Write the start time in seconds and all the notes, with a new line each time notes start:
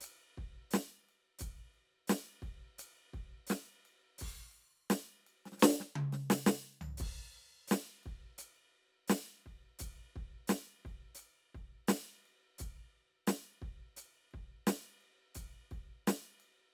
0.01 hi-hat pedal, ride
0.36 kick, ride
0.71 snare, hi-hat pedal, ride
1.09 ride
1.39 kick, hi-hat pedal, ride
1.74 ride
2.08 snare, hi-hat pedal, ride
2.42 kick, ride
2.79 hi-hat pedal, ride
3.14 kick, ride
3.47 snare, hi-hat pedal, ride
3.86 ride
4.19 kick, hi-hat pedal, crash
4.52 ride
4.90 snare, hi-hat pedal, ride
5.27 ride
5.46 snare
5.52 snare
5.58 snare, hi-hat pedal
5.63 snare
5.80 snare
5.96 mid tom
6.13 snare
6.30 snare, hi-hat pedal
6.47 snare
6.81 floor tom
6.98 kick, hi-hat pedal, crash
7.68 snare, hi-hat pedal
7.72 ride
8.04 kick, ride
8.38 hi-hat pedal, ride
9.08 snare, hi-hat pedal, ride
9.46 kick
9.79 kick, hi-hat pedal, ride
10.16 kick, ride
10.48 snare, hi-hat pedal, ride
10.85 kick, ride
11.15 hi-hat pedal
11.20 ride
11.55 kick, ride
11.88 snare, hi-hat pedal, ride
12.26 ride
12.59 kick, hi-hat pedal, ride
13.27 snare, hi-hat pedal, ride
13.62 kick
13.97 hi-hat pedal, ride
14.31 kick, ride
14.67 snare, hi-hat pedal, ride
15.01 ride
15.35 kick, hi-hat pedal, ride
15.71 kick, ride
16.07 snare, hi-hat pedal, ride
16.40 ride